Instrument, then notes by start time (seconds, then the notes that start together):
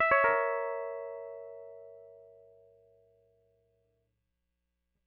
electric guitar
0.00 E5
0.11 C#5
0.24 A#4